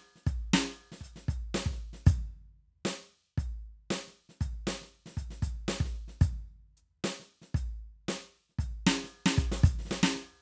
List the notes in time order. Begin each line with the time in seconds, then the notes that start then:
0.16 snare
0.27 closed hi-hat, kick
0.54 closed hi-hat, snare
0.80 closed hi-hat
0.92 snare
1.01 closed hi-hat, kick
1.17 snare
1.29 closed hi-hat, kick
1.55 closed hi-hat, snare
1.67 kick
1.72 snare
1.80 closed hi-hat
1.94 snare
2.07 closed hi-hat, kick
2.33 closed hi-hat
2.86 closed hi-hat, snare
3.38 closed hi-hat, kick
3.65 closed hi-hat
3.91 closed hi-hat, snare
4.08 snare
4.30 snare
4.41 closed hi-hat, kick
4.68 closed hi-hat, snare
4.82 snare
4.94 closed hi-hat
5.07 snare
5.11 snare
5.18 closed hi-hat, kick
5.31 snare
5.43 closed hi-hat, kick
5.69 closed hi-hat, snare
5.81 kick
5.85 snare
5.94 snare, closed hi-hat
6.08 snare
6.21 closed hi-hat, kick
6.77 closed hi-hat
7.05 closed hi-hat, snare
7.20 snare
7.30 closed hi-hat
7.42 snare
7.55 closed hi-hat, kick
8.09 closed hi-hat, snare
8.50 snare
8.59 closed hi-hat, kick
8.87 closed hi-hat, snare
9.05 snare
9.14 closed hi-hat
9.27 snare
9.38 closed hi-hat, kick
9.52 snare
9.64 closed hi-hat, kick
9.79 snare
9.86 snare
9.88 snare, hi-hat pedal
9.92 snare
10.04 snare
10.16 snare